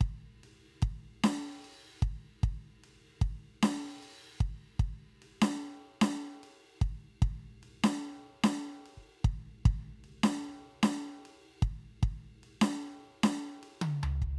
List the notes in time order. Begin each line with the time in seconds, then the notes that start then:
0.01 kick, ride
0.44 ride
0.82 kick, ride
1.24 snare, crash
1.65 ride
2.02 kick, ride
2.44 kick, ride
2.84 ride
3.22 kick, ride
3.63 snare, crash
4.03 ride
4.41 kick, ride
4.80 kick, ride
5.22 ride
5.42 snare
5.56 snare
5.60 ride
6.02 snare, ride
6.44 ride
6.82 kick, ride
7.22 kick, ride
7.63 ride
7.84 snare
7.98 snare
8.05 ride
8.44 snare, ride
8.86 ride
8.97 kick
9.25 kick, ride
9.66 kick, ride
9.89 snare
10.04 ride
10.24 snare
10.45 ride
10.83 snare, ride
10.97 snare
11.26 ride
11.62 kick, ride
12.03 kick, ride
12.33 snare
12.44 ride
12.62 snare
12.75 snare
12.80 snare, ride
13.24 snare, ride
13.63 ride
13.82 high tom
14.03 floor tom
14.22 kick